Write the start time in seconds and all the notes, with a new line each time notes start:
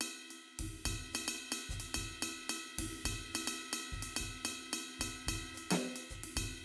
0.02 hi-hat pedal, ride bell
0.30 ride bell
0.59 kick, hi-hat pedal, ride
0.85 kick, ride bell
1.13 hi-hat pedal, ride bell
1.28 ride bell
1.52 ride bell
1.69 kick, hi-hat pedal
1.80 ride bell
1.94 kick, ride bell
2.22 hi-hat pedal, ride bell
2.49 ride bell
2.78 kick, hi-hat pedal, ride
3.05 kick, ride bell
3.10 kick
3.34 hi-hat pedal, ride bell
3.47 ride bell
3.73 ride bell
3.92 kick, hi-hat pedal
4.02 ride bell
4.16 kick, ride bell
4.45 hi-hat pedal, ride bell
4.73 ride bell
4.99 kick, hi-hat pedal, ride bell
5.27 kick, ride bell
5.54 hi-hat pedal, ride bell
5.70 snare, ride bell
5.96 ride bell
6.10 kick, hi-hat pedal
6.23 ride
6.36 kick, ride bell